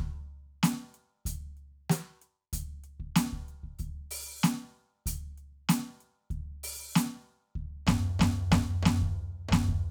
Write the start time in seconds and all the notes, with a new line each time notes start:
0.01 kick
0.64 closed hi-hat, snare
0.95 closed hi-hat
1.27 closed hi-hat, kick
1.58 closed hi-hat
1.91 closed hi-hat, snare
2.23 closed hi-hat
2.54 closed hi-hat, kick
2.85 closed hi-hat
3.01 kick
3.17 closed hi-hat, snare
3.34 kick
3.49 closed hi-hat
3.65 kick
3.80 closed hi-hat, kick
4.12 open hi-hat
4.44 closed hi-hat, snare, hi-hat pedal
5.07 closed hi-hat, kick
5.39 closed hi-hat
5.70 closed hi-hat, snare
6.02 closed hi-hat
6.31 kick, closed hi-hat
6.64 open hi-hat
6.97 open hi-hat, snare, hi-hat pedal
7.56 kick
7.88 kick, snare, floor tom
8.20 kick, snare, floor tom
8.53 kick, snare, floor tom
8.84 kick, snare, floor tom
9.03 kick
9.50 kick, snare, floor tom
9.69 kick